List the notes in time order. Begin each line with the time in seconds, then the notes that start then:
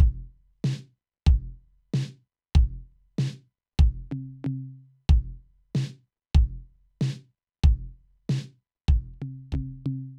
0.01 kick
0.66 snare
1.28 kick
1.96 snare
2.57 kick
3.20 snare
3.81 kick
4.13 floor tom, high tom
4.46 floor tom, high tom
5.11 kick
5.77 snare
6.37 kick
7.03 snare
7.66 kick
8.31 snare
8.90 kick
9.16 kick
9.24 floor tom, high tom
9.54 kick, floor tom, high tom
9.88 floor tom, high tom